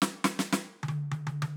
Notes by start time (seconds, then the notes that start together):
0.02 snare
0.24 snare
0.39 snare
0.53 snare
0.83 high tom
0.88 high tom
1.12 high tom
1.27 high tom
1.42 high tom